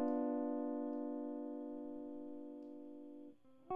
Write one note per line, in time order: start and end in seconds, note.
0.00 3.31 B3
0.00 3.36 D4
0.00 3.30 F4